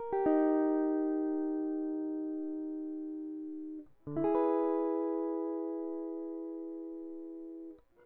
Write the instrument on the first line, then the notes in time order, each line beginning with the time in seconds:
electric guitar
0.00 A#4
0.15 G4
0.29 D#4
4.17 E4
4.25 G#4
4.34 B4